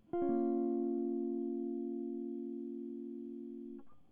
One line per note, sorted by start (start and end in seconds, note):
0.14 3.82 F4
0.22 3.85 C#4
0.29 3.82 A#3